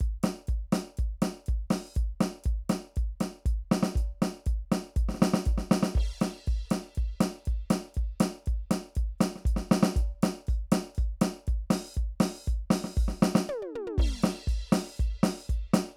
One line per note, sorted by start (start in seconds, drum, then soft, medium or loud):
0.00 closed hi-hat soft
0.00 kick medium
0.23 closed hi-hat medium
0.23 snare loud
0.47 closed hi-hat soft
0.47 kick medium
0.72 open hi-hat loud
0.72 snare loud
0.72 hi-hat pedal soft
0.97 closed hi-hat medium
0.97 kick medium
1.22 closed hi-hat medium
1.22 snare loud
1.46 closed hi-hat medium
1.46 kick medium
1.70 open hi-hat medium
1.70 snare loud
1.94 closed hi-hat medium
1.94 kick medium
1.94 hi-hat pedal medium
2.20 closed hi-hat medium
2.20 snare loud
2.44 closed hi-hat medium
2.44 kick medium
2.69 closed hi-hat medium
2.69 snare loud
2.96 closed hi-hat soft
2.96 kick medium
3.20 closed hi-hat medium
3.20 snare medium
3.45 closed hi-hat medium
3.45 kick medium
3.71 snare loud
3.83 snare loud
3.95 closed hi-hat medium
3.95 kick medium
4.22 closed hi-hat medium
4.22 snare loud
4.46 closed hi-hat medium
4.46 kick medium
4.72 closed hi-hat medium
4.72 snare loud
4.96 closed hi-hat medium
4.96 kick medium
5.09 snare medium
5.14 snare soft
5.19 snare loud
5.19 hi-hat pedal soft
5.33 snare loud
5.45 closed hi-hat medium
5.45 kick medium
5.58 snare medium
5.71 snare loud
5.83 snare loud
5.95 kick medium
5.95 crash medium
6.21 closed hi-hat medium
6.21 snare loud
6.47 closed hi-hat soft
6.47 kick medium
6.70 closed hi-hat medium
6.70 snare loud
6.95 closed hi-hat soft
6.95 kick medium
7.20 closed hi-hat medium
7.20 snare loud
7.45 closed hi-hat soft
7.45 kick medium
7.70 closed hi-hat loud
7.70 snare loud
7.94 closed hi-hat soft
7.94 kick medium
8.20 closed hi-hat loud
8.20 snare loud
8.46 closed hi-hat soft
8.46 kick medium
8.71 closed hi-hat loud
8.71 snare loud
8.95 closed hi-hat medium
8.95 kick medium
9.18 closed hi-hat loud
9.18 snare loud
9.18 hi-hat pedal soft
9.36 snare soft
9.45 closed hi-hat medium
9.45 kick medium
9.56 snare medium
9.71 snare loud
9.83 snare loud
9.94 closed hi-hat medium
9.94 kick medium
9.94 hi-hat pedal soft
10.22 closed hi-hat medium
10.22 snare loud
10.47 open hi-hat soft
10.47 kick medium
10.72 closed hi-hat loud
10.72 snare loud
10.95 open hi-hat medium
10.95 kick medium
11.21 closed hi-hat loud
11.21 snare loud
11.47 closed hi-hat soft
11.47 kick medium
11.70 open hi-hat loud
11.70 snare loud
11.92 closed hi-hat medium
11.92 hi-hat pedal soft
11.97 kick medium
12.20 open hi-hat loud
12.20 snare loud
12.46 closed hi-hat soft
12.46 kick medium
12.70 open hi-hat loud
12.70 snare loud
12.84 snare medium
12.97 open hi-hat medium
12.97 kick medium
13.08 snare medium
13.22 snare loud
13.26 hi-hat pedal medium
13.35 snare loud
13.48 high tom loud
13.62 high tom medium
13.75 mid tom loud
13.86 mid tom medium
13.98 kick medium
13.98 crash medium
14.22 closed hi-hat medium
14.22 snare loud
14.47 closed hi-hat soft
14.47 kick medium
14.72 open hi-hat loud
14.72 snare loud
14.97 closed hi-hat soft
14.97 kick medium
14.97 hi-hat pedal soft
15.23 open hi-hat loud
15.23 snare loud
15.49 closed hi-hat medium
15.49 kick medium
15.73 closed hi-hat loud
15.73 snare loud